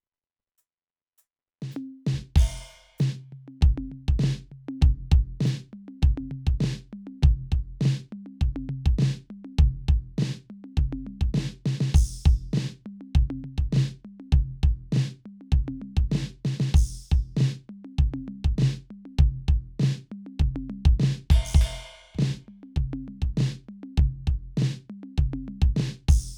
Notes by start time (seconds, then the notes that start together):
0.58 hi-hat pedal
1.18 hi-hat pedal
1.62 snare
1.72 hi-hat pedal
1.77 high tom
2.07 snare
2.13 kick
2.36 kick, crash, ride
2.98 snare, floor tom, hi-hat pedal
3.33 floor tom
3.48 high tom
3.61 kick, floor tom
3.78 high tom
3.92 floor tom
4.08 kick
4.20 snare
4.24 snare
4.52 floor tom
4.69 high tom
4.82 kick, floor tom
5.12 kick
5.41 snare
5.46 snare, hi-hat pedal
5.73 mid tom
5.88 high tom
6.02 kick, floor tom
6.18 high tom
6.31 floor tom
6.47 kick
6.61 snare
6.64 snare
6.93 mid tom
7.07 high tom
7.23 kick, floor tom
7.52 kick
7.81 snare
7.86 snare
8.12 mid tom
8.26 high tom
8.41 kick, floor tom
8.56 high tom
8.69 floor tom
8.86 kick
8.99 snare
9.02 snare
9.30 mid tom
9.45 high tom
9.59 kick, floor tom
9.88 kick
10.18 snare
10.22 snare
10.50 mid tom
10.64 high tom
10.77 kick, floor tom
10.93 high tom
11.07 mid tom
11.21 kick
11.34 snare
11.38 snare
11.66 snare
11.81 snare
11.95 kick, crash
12.26 kick
12.37 kick
12.53 snare
12.58 snare
12.86 mid tom
13.01 high tom
13.15 kick, floor tom
13.30 high tom
13.44 floor tom
13.58 kick
13.73 snare
13.77 snare
14.05 mid tom
14.20 high tom
14.32 kick, floor tom
14.63 kick
14.93 snare
14.96 snare
15.26 mid tom
15.41 high tom
15.52 kick, floor tom
15.68 high tom
15.82 mid tom
15.97 kick
16.12 snare
16.15 snare
16.45 snare
16.60 snare
16.74 kick, crash
17.12 kick
17.37 snare
17.41 snare
17.69 mid tom
17.85 high tom
17.98 kick, floor tom
18.14 high tom
18.28 mid tom
18.45 kick
18.58 snare
18.62 snare
18.91 mid tom
19.05 high tom
19.19 kick, floor tom
19.48 kick
19.80 snare
19.83 snare
20.12 mid tom
20.27 high tom
20.40 kick, floor tom
20.56 high tom
20.70 mid tom
20.85 kick
21.00 snare
21.04 snare
21.30 kick, ride
21.45 crash
21.55 kick
21.61 ride
22.15 kick
22.19 snare
22.22 snare
22.29 kick
22.48 mid tom
22.63 high tom
22.76 kick, floor tom
22.93 high tom
23.08 mid tom
23.22 kick
23.37 snare
23.41 snare
23.69 mid tom
23.83 high tom
23.98 kick, floor tom
24.27 kick
24.57 snare
24.62 snare
24.90 mid tom
25.03 high tom
25.18 kick, floor tom
25.34 high tom
25.48 mid tom
25.62 kick
25.77 snare
25.80 snare
26.09 kick, crash